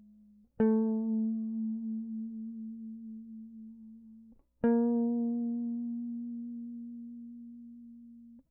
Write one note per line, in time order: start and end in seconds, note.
0.59 4.34 A3
4.65 8.41 A#3